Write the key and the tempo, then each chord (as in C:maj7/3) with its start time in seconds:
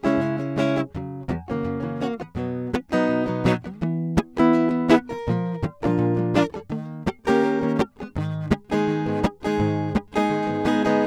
G# minor, 166 BPM
0.00 C#:min
0.95 F#:maj/5
2.40 B:maj
3.84 E:(1,5,#11)
5.29 A#:maj
6.73 D#:7
8.18 G#:min